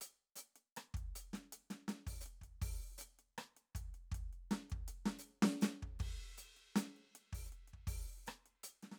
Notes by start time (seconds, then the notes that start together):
0.01 closed hi-hat
0.36 closed hi-hat, hi-hat pedal
0.56 closed hi-hat
0.76 cross-stick, closed hi-hat
0.94 kick, closed hi-hat
1.15 closed hi-hat
1.33 snare, closed hi-hat
1.52 closed hi-hat
1.70 snare, closed hi-hat
1.88 snare, closed hi-hat
2.07 open hi-hat, kick
2.21 hi-hat pedal
2.26 closed hi-hat
2.41 kick, closed hi-hat
2.62 open hi-hat, kick
2.98 closed hi-hat, hi-hat pedal
3.19 closed hi-hat
3.38 cross-stick, closed hi-hat
3.40 cross-stick
3.57 closed hi-hat
3.75 kick, closed hi-hat
3.94 closed hi-hat
4.12 kick, closed hi-hat
4.33 closed hi-hat
4.51 snare, closed hi-hat
4.70 kick, closed hi-hat
4.88 closed hi-hat
5.05 snare
5.19 hi-hat pedal
5.42 snare
5.61 snare, hi-hat pedal
5.82 kick
5.99 kick, crash
6.38 closed hi-hat
6.56 closed hi-hat
6.76 closed hi-hat, snare
6.96 closed hi-hat
7.15 closed hi-hat
7.33 open hi-hat, kick
7.46 hi-hat pedal
7.52 closed hi-hat
7.68 closed hi-hat
7.73 kick
7.87 open hi-hat, kick
8.26 cross-stick, closed hi-hat, hi-hat pedal
8.46 closed hi-hat
8.63 closed hi-hat
8.83 snare, closed hi-hat
8.91 snare